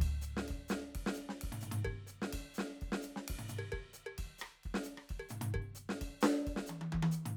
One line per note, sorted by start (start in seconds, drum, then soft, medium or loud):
0.01 kick medium
0.01 ride bell medium
0.08 kick soft
0.22 hi-hat pedal medium
0.22 ride soft
0.37 snare medium
0.48 kick soft
0.48 ride bell medium
0.69 snare medium
0.69 hi-hat pedal medium
0.95 kick soft
0.95 ride medium
1.07 snare medium
1.14 hi-hat pedal medium
1.18 ride soft
1.29 snare medium
1.41 kick soft
1.41 ride medium
1.50 kick soft
1.50 mid tom medium
1.61 hi-hat pedal medium
1.61 mid tom medium
1.72 mid tom medium
1.85 kick soft
1.85 percussion loud
2.07 hi-hat pedal medium
2.07 percussion soft
2.22 snare medium
2.33 kick soft
2.33 ride bell medium
2.40 kick soft
2.54 hi-hat pedal medium
2.58 snare medium
2.81 kick soft
2.81 ride bell soft
2.92 snare medium
3.02 hi-hat pedal medium
3.02 ride medium
3.16 snare medium
3.28 kick soft
3.28 ride loud
3.36 kick soft
3.36 mid tom medium
3.49 hi-hat pedal medium
3.49 mid tom medium
3.59 percussion loud
3.72 kick soft
3.72 percussion loud
3.94 hi-hat pedal medium
3.94 percussion soft
4.06 percussion loud
4.18 kick soft
4.18 ride bell medium
4.25 kick soft
4.39 cross-stick medium
4.39 hi-hat pedal medium
4.64 kick soft
4.64 ride bell soft
4.74 snare medium
4.84 hi-hat pedal medium
4.84 ride soft
4.98 cross-stick medium
5.09 kick soft
5.09 ride bell soft
5.20 percussion medium
5.29 hi-hat pedal medium
5.29 mid tom medium
5.41 mid tom medium
5.54 kick soft
5.54 percussion loud
5.60 kick soft
5.60 mid tom soft
5.75 hi-hat pedal medium
5.89 snare medium
6.01 kick soft
6.01 ride bell medium
6.21 snare loud
6.21 hi-hat pedal medium
6.42 hi-hat pedal soft
6.47 kick soft
6.47 ride bell soft
6.57 snare medium
6.67 hi-hat pedal medium
6.67 high tom medium
6.81 high tom medium
6.92 kick soft
6.92 high tom medium
7.00 kick soft
7.00 high tom medium
7.12 hi-hat pedal medium
7.26 mid tom medium